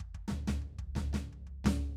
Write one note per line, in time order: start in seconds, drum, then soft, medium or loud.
0.02 kick soft
0.16 kick soft
0.29 snare medium
0.29 floor tom medium
0.49 snare medium
0.49 floor tom medium
0.63 kick soft
0.80 kick soft
0.97 snare medium
0.97 floor tom medium
1.14 snare medium
1.14 floor tom medium
1.34 kick soft
1.48 kick soft
1.66 snare medium
1.66 floor tom loud